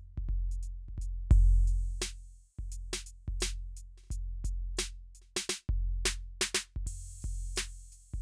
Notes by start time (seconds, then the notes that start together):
0.18 kick
0.29 kick
0.51 closed hi-hat
0.63 closed hi-hat
0.89 kick
0.98 closed hi-hat, kick
1.31 kick, crash
1.67 closed hi-hat
2.02 closed hi-hat, snare
2.36 closed hi-hat
2.59 kick
2.72 closed hi-hat
2.93 snare
3.06 closed hi-hat
3.28 kick
3.41 open hi-hat, snare
3.77 closed hi-hat
3.98 snare
4.04 snare
4.07 snare
4.10 closed hi-hat, kick, snare
4.45 closed hi-hat, kick
4.77 closed hi-hat, snare, hi-hat pedal
5.15 closed hi-hat
5.22 snare
5.36 snare
5.49 snare
5.69 kick
6.05 snare
6.41 snare
6.55 snare
6.76 kick
6.87 kick, crash
7.22 open hi-hat, kick
7.56 closed hi-hat, snare
7.92 closed hi-hat
8.14 kick